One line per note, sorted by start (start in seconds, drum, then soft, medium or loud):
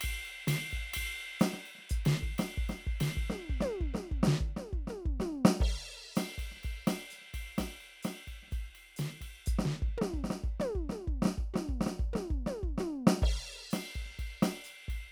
0.01 kick soft
0.01 hi-hat pedal soft
0.01 ride bell loud
0.10 kick soft
0.25 ride soft
0.48 snare medium
0.48 hi-hat pedal medium
0.48 ride bell loud
0.71 kick soft
0.71 ride soft
0.78 kick soft
0.94 kick soft
0.94 hi-hat pedal soft
0.94 ride bell loud
1.02 kick soft
1.18 ride soft
1.40 snare loud
1.40 hi-hat pedal medium
1.40 ride medium
1.54 snare soft
1.66 ride soft
1.75 snare soft
1.79 snare soft
1.90 kick soft
1.90 hi-hat pedal loud
1.98 kick soft
2.06 snare loud
2.06 ride medium
2.23 kick soft
2.28 kick soft
2.38 snare medium
2.38 ride medium
2.58 kick soft
2.69 snare soft
2.69 ride soft
2.87 kick soft
3.00 snare medium
3.00 ride medium
3.17 kick soft
3.30 snare medium
3.30 mid tom medium
3.50 kick soft
3.61 snare medium
3.61 high tom loud
3.81 kick soft
3.94 snare medium
3.94 mid tom medium
4.12 kick soft
4.17 kick soft
4.23 snare medium
4.27 snare loud
4.41 kick soft
4.57 snare soft
4.57 high tom medium
4.73 kick soft
4.88 snare soft
4.88 mid tom medium
5.06 kick soft
5.20 snare medium
5.20 floor tom medium
5.45 snare loud
5.61 kick medium
5.61 crash medium
6.16 snare medium
6.16 hi-hat pedal loud
6.16 ride medium
6.38 kick soft
6.38 ride medium
6.52 snare soft
6.57 snare soft
6.61 kick soft
6.61 snare soft
6.61 ride soft
6.87 snare medium
6.87 ride medium
7.11 snare soft
7.11 hi-hat pedal medium
7.19 snare soft
7.22 snare soft
7.34 kick soft
7.34 ride medium
7.57 kick soft
7.57 snare medium
7.57 hi-hat pedal soft
7.57 ride medium
7.64 kick soft
7.81 ride soft
8.03 snare medium
8.03 hi-hat pedal medium
8.03 ride medium
8.28 kick soft
8.28 ride soft
8.43 snare soft
8.48 snare soft
8.51 kick soft
8.51 snare soft
8.51 hi-hat pedal soft
8.51 ride soft
8.75 ride soft
8.97 snare medium
8.97 hi-hat pedal medium
8.97 ride medium
9.21 kick soft
9.21 ride medium
9.46 kick soft
9.46 hi-hat pedal loud
9.54 kick soft
9.59 snare medium
9.65 snare medium
9.82 kick soft
9.89 kick soft
9.97 mid tom medium
10.02 snare medium
10.14 kick soft
10.24 snare medium
10.31 snare medium
10.44 kick soft
10.60 snare medium
10.60 high tom loud
10.75 kick soft
10.90 snare soft
10.90 mid tom medium
11.08 kick soft
11.22 snare medium
11.26 snare medium
11.38 kick soft
11.53 snare medium
11.53 floor tom medium
11.69 kick soft
11.81 snare medium
11.87 snare medium
12.00 kick soft
12.13 snare medium
12.13 mid tom medium
12.31 kick soft
12.47 snare medium
12.47 high tom medium
12.63 kick soft
12.69 kick soft
12.78 snare medium
12.78 floor tom medium
13.07 snare loud
13.22 kick medium
13.22 crash medium
13.71 snare medium
13.71 hi-hat pedal medium
13.71 ride medium
13.95 kick soft
13.95 ride soft
14.06 snare soft
14.11 snare soft
14.17 kick soft
14.17 hi-hat pedal soft
14.17 ride soft
14.43 snare medium
14.43 ride medium
14.64 hi-hat pedal medium
14.64 ride soft
14.88 kick soft
14.88 ride soft
14.94 kick soft